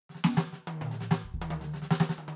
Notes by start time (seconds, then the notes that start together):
0.10 snare
0.15 snare
0.25 snare
0.38 snare
0.53 snare
0.68 high tom
0.82 mid tom
0.92 snare
1.01 snare
1.11 snare
1.25 kick
1.35 kick
1.42 high tom
1.51 high tom
1.62 snare
1.74 snare
1.82 snare
1.91 snare
2.01 snare
2.10 snare
2.19 high tom
2.29 high tom